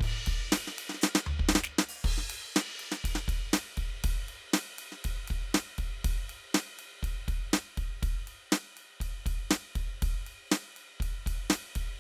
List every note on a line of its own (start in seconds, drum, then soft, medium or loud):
0.01 kick medium
0.01 ride medium
0.27 kick medium
0.27 ride medium
0.48 kick soft
0.53 snare loud
0.53 ride loud
0.68 snare medium
0.79 ride medium
0.90 snare medium
0.95 snare soft
1.02 snare loud
1.02 hi-hat pedal loud
1.15 snare loud
1.27 floor tom loud
1.40 kick medium
1.49 snare loud
1.56 snare loud
1.64 snare medium
1.79 snare loud
1.89 open hi-hat medium
2.04 kick medium
2.04 crash medium
2.18 snare soft
2.30 ride medium
2.56 snare loud
2.56 ride medium
2.80 ride medium
2.92 snare medium
3.05 kick medium
3.05 ride medium
3.16 snare medium
3.28 kick medium
3.28 ride medium
3.54 snare loud
3.54 ride loud
3.78 kick medium
3.78 ride medium
4.04 kick medium
4.04 ride loud
4.29 ride medium
4.54 snare loud
4.54 ride loud
4.79 ride medium
4.92 snare soft
5.05 kick medium
5.05 ride medium
5.28 kick medium
5.28 ride medium
5.55 snare loud
5.55 ride medium
5.79 kick medium
5.79 ride medium
6.05 kick medium
6.05 ride loud
6.30 ride medium
6.55 snare loud
6.55 ride loud
6.79 ride medium
7.03 kick medium
7.03 ride medium
7.28 kick medium
7.28 ride medium
7.54 snare loud
7.54 ride medium
7.78 kick medium
7.78 ride medium
8.03 kick medium
8.03 ride medium
8.28 ride medium
8.53 snare loud
8.53 ride medium
8.77 ride medium
9.01 kick medium
9.01 ride medium
9.26 kick medium
9.26 ride medium
9.51 snare loud
9.51 ride medium
9.76 kick medium
9.76 ride medium
10.03 kick medium
10.03 ride medium
10.27 ride medium
10.47 hi-hat pedal soft
10.52 snare loud
10.52 ride medium
10.77 ride soft
11.01 kick medium
11.01 ride medium
11.27 kick medium
11.27 ride medium
11.50 snare loud
11.50 hi-hat pedal soft
11.50 ride loud
11.76 kick medium
11.76 ride medium